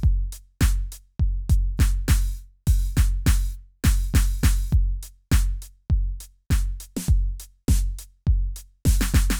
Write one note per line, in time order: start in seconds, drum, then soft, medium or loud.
0.01 closed hi-hat soft
0.01 kick loud
0.01 hi-hat pedal soft
0.32 closed hi-hat loud
0.61 kick loud
0.61 snare loud
0.92 closed hi-hat loud
1.19 kick loud
1.49 open hi-hat loud
1.49 kick loud
1.77 kick loud
1.77 snare loud
1.77 hi-hat pedal soft
2.08 open hi-hat loud
2.08 kick loud
2.08 snare loud
2.35 hi-hat pedal soft
2.67 open hi-hat loud
2.67 kick loud
2.95 closed hi-hat loud
2.95 kick loud
2.95 snare loud
2.95 hi-hat pedal soft
3.26 open hi-hat loud
3.26 kick loud
3.26 snare loud
3.51 hi-hat pedal medium
3.84 open hi-hat loud
3.84 kick loud
3.84 snare loud
4.14 open hi-hat loud
4.14 kick loud
4.14 snare loud
4.43 open hi-hat loud
4.43 kick loud
4.43 snare loud
4.70 kick loud
4.70 hi-hat pedal medium
5.03 closed hi-hat loud
5.31 kick loud
5.31 snare loud
5.62 closed hi-hat loud
5.90 kick loud
6.20 closed hi-hat loud
6.50 kick loud
6.50 snare loud
6.80 closed hi-hat loud
6.96 snare loud
7.03 hi-hat pedal soft
7.08 kick loud
7.40 closed hi-hat loud
7.68 kick loud
7.68 snare loud
7.99 closed hi-hat loud
8.27 kick loud
8.56 closed hi-hat loud
8.85 open hi-hat loud
8.85 kick loud
8.85 snare loud
9.01 snare loud
9.14 kick loud
9.14 snare loud
9.30 snare loud